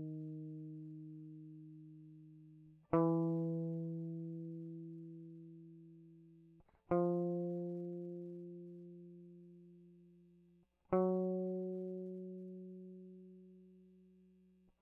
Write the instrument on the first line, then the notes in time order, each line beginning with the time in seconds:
electric guitar
2.95 E3
6.93 F3
10.94 F#3